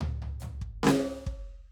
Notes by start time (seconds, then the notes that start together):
0.01 floor tom, high tom
0.22 floor tom, high tom
0.40 floor tom, hi-hat pedal, high tom
0.61 kick
0.83 snare
0.87 snare
1.27 kick